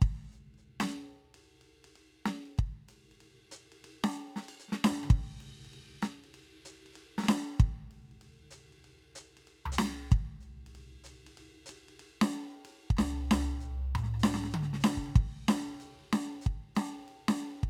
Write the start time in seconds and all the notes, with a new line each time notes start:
0.01 open hi-hat, kick, ride bell
0.32 hi-hat pedal, ride
0.54 hi-hat pedal, ride
0.80 snare
0.88 hi-hat pedal
1.34 ride
1.61 ride
1.84 ride
1.96 ride
2.26 snare, ride
2.46 ride
2.58 kick, ride
2.88 hi-hat pedal, ride
3.11 ride
3.21 ride
3.51 hi-hat pedal, ride
3.72 ride
3.84 ride
4.04 snare
4.09 hi-hat pedal
4.16 ride
4.36 snare
4.42 hi-hat pedal
4.48 ride bell
4.60 hi-hat pedal
4.68 snare
4.72 snare
4.84 snare, hi-hat pedal
4.90 mid tom
5.03 high tom
5.10 kick, crash
5.40 ride
5.65 ride
5.73 ride
6.02 snare, hi-hat pedal, ride
6.24 ride
6.34 ride
6.65 hi-hat pedal, ride
6.86 ride
6.93 hi-hat pedal, ride
7.18 snare, hi-hat pedal
7.24 snare
7.29 snare
7.59 kick, ride
7.66 hi-hat pedal
7.91 ride
8.11 ride
8.51 hi-hat pedal, ride
8.73 ride
8.84 ride
9.15 hi-hat pedal, ride
9.37 ride
9.47 ride
9.66 floor tom
9.72 hi-hat pedal
9.78 snare
10.11 kick, ride
10.40 hi-hat pedal, ride
10.66 ride
10.75 ride
11.04 hi-hat pedal, ride
11.27 ride
11.37 ride
11.66 hi-hat pedal, ride
11.89 ride
11.99 ride
12.21 snare, hi-hat pedal
12.34 ride
12.65 hi-hat pedal, ride
12.90 kick
12.97 snare, floor tom
13.31 snare, floor tom
13.60 hi-hat pedal
13.95 hi-hat pedal, mid tom
14.04 snare
14.14 cross-stick
14.19 snare, hi-hat pedal
14.34 snare
14.44 snare
14.51 hi-hat pedal, high tom
14.62 snare
14.73 snare
14.80 snare, hi-hat pedal
14.94 kick, mid tom
15.06 high tom
15.16 kick, crash
15.48 snare, ride
15.80 hi-hat pedal, ride
16.13 snare, hi-hat pedal, ride
16.33 ride
16.41 hi-hat pedal
16.46 kick, ride
16.75 snare, hi-hat pedal, ride
17.08 ride
17.28 snare
17.39 ride
17.63 kick